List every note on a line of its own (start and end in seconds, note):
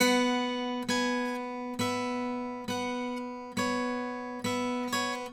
0.00 0.85 B3
0.00 0.85 F#5
0.89 1.78 B3
0.89 1.40 G#5
1.80 2.67 B3
1.80 2.66 E5
2.69 3.54 B3
2.69 3.22 F#5
3.58 4.42 B3
3.58 4.43 C#5
4.45 4.89 B3
4.45 4.88 E5
4.93 5.30 B3
4.93 5.14 C#5
5.14 5.25 C5